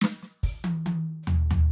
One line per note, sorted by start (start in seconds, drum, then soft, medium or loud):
0.02 snare loud
0.04 snare loud
0.23 snare soft
0.43 open hi-hat loud
0.43 kick medium
0.64 high tom loud
0.86 high tom loud
1.23 hi-hat pedal medium
1.27 floor tom loud
1.51 floor tom loud